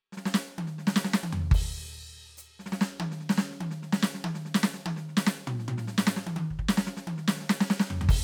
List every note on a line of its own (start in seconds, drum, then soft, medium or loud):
0.12 snare soft
0.17 snare medium
0.26 snare loud
0.34 snare loud
0.58 high tom loud
0.67 snare soft
0.78 snare soft
0.87 snare loud
0.96 snare loud
1.04 snare loud
1.14 snare loud
1.23 high tom loud
1.33 floor tom loud
1.51 kick loud
1.51 crash loud
2.37 hi-hat pedal loud
2.59 snare soft
2.66 snare medium
2.72 snare medium
2.81 snare loud
3.00 high tom loud
3.11 snare medium
3.20 snare soft
3.29 snare loud
3.38 snare loud
3.51 snare soft
3.60 high tom loud
3.71 snare medium
3.82 snare soft
3.92 snare loud
4.03 snare loud
4.14 snare medium
4.24 high tom loud
4.35 snare medium
4.45 snare soft
4.54 snare loud
4.63 snare loud
4.74 snare medium
4.86 high tom loud
4.96 snare medium
5.09 snare soft
5.17 snare loud
5.27 snare loud
5.47 mid tom loud
5.59 snare soft
5.68 mid tom loud
5.78 snare medium
5.87 snare medium
5.98 snare loud
6.07 snare loud
6.16 snare medium
6.27 high tom loud
6.36 high tom loud
6.50 kick soft
6.59 kick medium
6.68 snare loud
6.77 snare loud
6.87 snare medium
7.07 high tom loud
7.17 snare soft
7.28 snare loud
7.36 snare medium
7.40 snare medium
7.44 snare soft
7.49 snare loud
7.60 snare loud
7.66 snare loud
7.66 hi-hat pedal soft
7.80 snare loud
7.90 floor tom loud
8.01 floor tom loud
8.09 kick loud
8.09 crash loud